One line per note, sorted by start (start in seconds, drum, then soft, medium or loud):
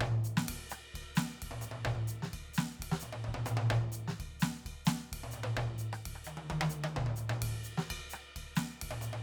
0.01 kick soft
0.01 mid tom loud
0.25 hi-hat pedal medium
0.38 snare loud
0.49 kick soft
0.49 ride loud
0.70 cross-stick medium
0.70 hi-hat pedal medium
0.95 kick soft
0.95 ride bell medium
1.16 snare loud
1.16 hi-hat pedal medium
1.43 kick soft
1.43 ride medium
1.52 mid tom medium
1.62 hi-hat pedal medium
1.62 mid tom medium
1.72 mid tom medium
1.86 kick soft
1.86 mid tom loud
1.92 kick soft
2.08 hi-hat pedal medium
2.23 snare medium
2.34 kick soft
2.34 ride bell medium
2.54 hi-hat pedal medium
2.59 snare medium
2.80 kick soft
2.80 ride loud
2.92 snare medium
3.00 hi-hat pedal medium
3.00 mid tom medium
3.13 mid tom medium
3.25 mid tom medium
3.29 kick soft
3.46 hi-hat pedal medium
3.46 mid tom loud
3.58 mid tom loud
3.71 kick soft
3.71 mid tom loud
3.93 hi-hat pedal medium
4.08 snare medium
4.20 kick soft
4.20 ride bell medium
4.28 kick soft
4.40 snare loud
4.40 hi-hat pedal medium
4.66 kick soft
4.66 ride bell medium
4.73 kick soft
4.86 snare loud
4.86 hi-hat pedal medium
5.13 kick soft
5.13 ride loud
5.24 mid tom medium
5.32 hi-hat pedal medium
5.44 mid tom medium
5.57 kick soft
5.57 mid tom loud
5.79 hi-hat pedal medium
5.94 cross-stick medium
6.06 kick soft
6.06 ride medium
6.16 cross-stick soft
6.25 hi-hat pedal medium
6.25 high tom medium
6.38 high tom medium
6.51 kick soft
6.51 high tom loud
6.62 high tom loud
6.70 hi-hat pedal medium
6.70 high tom soft
6.84 high tom loud
6.97 kick soft
6.97 mid tom loud
7.04 kick soft
7.04 mid tom medium
7.17 hi-hat pedal medium
7.17 mid tom soft
7.30 mid tom loud
7.43 kick soft
7.43 ride loud
7.64 hi-hat pedal medium
7.78 snare medium
7.91 kick soft
7.91 ride bell loud
8.10 cross-stick medium
8.10 hi-hat pedal medium
8.37 kick soft
8.37 ride bell medium
8.56 snare medium
8.56 hi-hat pedal medium
8.82 kick soft
8.82 ride loud
8.91 mid tom medium
9.02 hi-hat pedal medium
9.02 mid tom medium
9.14 mid tom medium